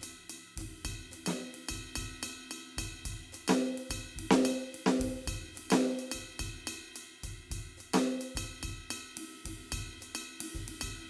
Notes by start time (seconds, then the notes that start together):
0.01 hi-hat pedal, ride bell
0.30 ride bell
0.55 kick, snare, hi-hat pedal, ride
0.85 kick, ride bell
0.93 kick
1.11 hi-hat pedal, ride
1.26 snare, ride bell
1.54 ride
1.68 kick, hi-hat pedal, ride bell
1.96 kick, ride bell
2.23 hi-hat pedal, ride bell
2.51 ride bell
2.77 kick, hi-hat pedal, ride bell
3.05 kick, ride bell
3.14 kick
3.32 hi-hat pedal, ride bell
3.48 snare, ride bell
3.78 ride
3.90 kick, hi-hat pedal, ride bell
4.16 kick, ride
4.31 snare
4.42 hi-hat pedal, ride bell
4.74 ride
4.86 snare
5.00 kick, hi-hat pedal, ride
5.05 kick
5.08 kick
5.27 kick, ride bell
5.33 kick
5.36 kick
5.55 hi-hat pedal, ride
5.70 snare, ride bell
5.99 ride bell
6.12 kick, hi-hat pedal, ride bell
6.39 kick, ride bell
6.45 kick
6.67 hi-hat pedal, ride bell
6.96 ride bell
7.23 kick, hi-hat pedal, ride bell
7.51 kick, ride bell
7.59 kick
7.77 hi-hat pedal, ride bell
7.94 snare, ride bell
8.21 ride bell
8.35 kick, hi-hat pedal, ride bell
8.41 kick
8.63 kick, ride bell
8.71 kick
8.91 hi-hat pedal, ride bell
9.17 ride
9.45 kick, hi-hat pedal, ride
9.72 kick, ride bell
9.78 kick
10.01 hi-hat pedal, ride bell
10.15 ride bell
10.41 ride
10.55 kick, hi-hat pedal
10.68 ride
10.81 kick, ride bell